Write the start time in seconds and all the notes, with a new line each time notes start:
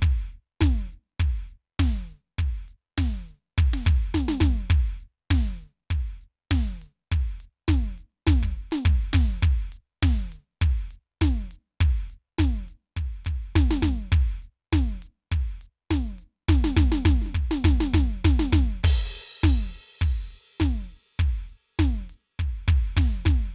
0.01 kick, hi-hat pedal
0.31 closed hi-hat
0.61 kick, snare
0.92 closed hi-hat
1.20 kick
1.50 closed hi-hat
1.80 kick, snare
2.10 closed hi-hat
2.39 kick
2.69 closed hi-hat
2.98 kick, snare
3.29 closed hi-hat
3.59 kick
3.74 snare
3.86 open hi-hat, kick
4.11 hi-hat pedal
4.15 kick, snare
4.29 snare
4.41 kick, snare
4.71 kick
5.01 closed hi-hat
5.31 kick, snare
5.62 closed hi-hat
5.91 kick
6.22 closed hi-hat
6.52 kick, snare
6.82 closed hi-hat
7.12 kick
7.41 closed hi-hat
7.69 kick, snare
7.99 closed hi-hat
8.27 open hi-hat, kick, snare, hi-hat pedal
8.43 kick
8.72 closed hi-hat, snare
8.86 kick
9.14 open hi-hat, kick, snare
9.42 kick, hi-hat pedal
9.73 closed hi-hat
10.03 kick, snare
10.33 closed hi-hat
10.62 kick
10.91 closed hi-hat
11.22 kick, snare
11.52 closed hi-hat
11.81 kick
12.11 closed hi-hat
12.39 kick, snare
12.69 closed hi-hat
12.97 kick
13.26 open hi-hat, kick
13.54 kick, snare, hi-hat pedal
13.71 snare
13.83 kick, snare
14.13 kick
14.43 closed hi-hat
14.73 kick, snare
15.03 closed hi-hat
15.32 kick
15.62 closed hi-hat
15.91 kick, snare
16.19 closed hi-hat
16.49 kick, snare
16.65 snare
16.76 kick, snare, hi-hat pedal
16.93 snare
17.06 kick, snare
17.22 snare
17.27 snare
17.35 kick
17.52 snare
17.65 kick, snare
17.81 snare
17.94 kick, snare
18.25 kick, snare
18.40 snare
18.53 kick, snare
18.84 kick, hi-hat pedal, crash
19.16 closed hi-hat
19.44 kick, snare
19.74 closed hi-hat
20.02 kick
20.31 closed hi-hat
20.61 kick, snare
20.91 closed hi-hat
21.20 kick
21.50 closed hi-hat
21.80 kick, snare
22.10 closed hi-hat
22.40 kick
22.69 open hi-hat, kick
22.96 kick, snare, hi-hat pedal
23.26 open hi-hat, kick, snare